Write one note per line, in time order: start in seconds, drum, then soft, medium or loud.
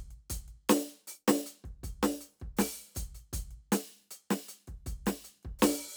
0.11 closed hi-hat soft
0.30 closed hi-hat loud
0.30 kick medium
0.49 closed hi-hat soft
0.70 closed hi-hat loud
0.70 snare loud
0.88 closed hi-hat soft
1.08 open hi-hat medium
1.08 hi-hat pedal soft
1.28 closed hi-hat soft
1.28 snare loud
1.47 closed hi-hat medium
1.65 kick soft
1.65 closed hi-hat soft
1.84 closed hi-hat medium
1.84 kick medium
2.03 snare loud
2.03 closed hi-hat soft
2.21 closed hi-hat medium
2.41 kick soft
2.41 closed hi-hat soft
2.58 open hi-hat loud
2.58 snare loud
2.58 hi-hat pedal soft
2.96 closed hi-hat medium
2.96 kick medium
2.96 hi-hat pedal medium
3.15 closed hi-hat soft
3.34 closed hi-hat loud
3.34 kick medium
3.51 closed hi-hat soft
3.73 closed hi-hat loud
3.73 snare loud
3.92 closed hi-hat soft
4.11 closed hi-hat medium
4.31 closed hi-hat soft
4.31 snare loud
4.49 closed hi-hat medium
4.68 kick soft
4.68 closed hi-hat soft
4.87 closed hi-hat medium
4.87 kick medium
5.07 snare loud
5.07 closed hi-hat soft
5.25 closed hi-hat medium
5.44 kick medium
5.44 closed hi-hat soft
5.60 open hi-hat loud
5.60 snare loud
5.60 hi-hat pedal medium